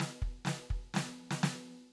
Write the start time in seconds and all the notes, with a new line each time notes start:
0.00 snare
0.22 kick
0.45 snare
0.47 snare
0.70 kick
0.94 snare
0.96 snare
1.31 snare
1.43 snare